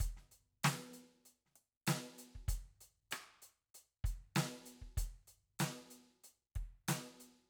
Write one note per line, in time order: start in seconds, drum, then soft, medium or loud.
0.00 closed hi-hat medium
0.00 kick soft
0.05 kick soft
0.17 snare soft
0.31 closed hi-hat soft
0.64 closed hi-hat medium
0.64 snare loud
0.93 closed hi-hat soft
1.25 closed hi-hat soft
1.46 snare soft
1.49 snare soft
1.56 closed hi-hat soft
1.87 closed hi-hat medium
1.87 snare loud
2.18 closed hi-hat soft
2.35 kick soft
2.48 closed hi-hat medium
2.48 kick soft
2.81 closed hi-hat soft
3.11 closed hi-hat medium
3.11 cross-stick medium
3.42 closed hi-hat soft
3.74 closed hi-hat soft
4.04 closed hi-hat soft
4.04 kick soft
4.35 closed hi-hat medium
4.35 snare loud
4.66 closed hi-hat soft
4.82 kick soft
4.97 closed hi-hat medium
4.97 kick soft
5.27 closed hi-hat soft
5.59 closed hi-hat medium
5.59 snare medium
5.90 closed hi-hat soft
6.24 closed hi-hat soft
6.55 kick soft
6.55 closed hi-hat soft
6.88 closed hi-hat medium
6.88 snare medium
7.20 closed hi-hat soft